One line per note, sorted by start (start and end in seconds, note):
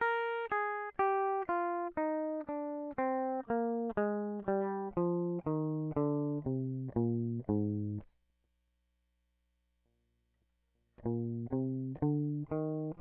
0.01 0.49 A#4
0.52 0.92 G#4
0.99 1.45 G4
1.49 1.92 F4
1.97 2.45 D#4
2.49 2.95 D4
2.99 3.44 C4
3.50 3.93 A#3
3.98 4.44 G#3
4.48 4.92 G3
4.98 5.43 F3
5.47 5.95 D#3
5.97 6.43 D3
6.47 6.94 C3
6.98 7.43 A#2
7.51 8.03 G#2
11.07 11.50 A#2
11.54 11.97 C3
12.03 12.47 D3
12.52 12.96 D#3